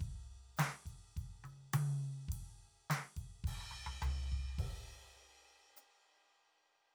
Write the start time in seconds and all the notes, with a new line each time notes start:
0.01 kick, ride
0.57 snare, hi-hat pedal, ride
0.86 kick, ride
1.17 kick, ride
1.44 high tom, ride
1.73 hi-hat pedal, high tom, ride
2.29 kick, ride
2.90 snare, hi-hat pedal, ride
3.17 kick, ride
3.44 kick, ride
3.61 floor tom
3.72 floor tom
3.87 floor tom
4.02 floor tom, hi-hat pedal
4.32 kick
4.59 kick, crash
5.77 hi-hat pedal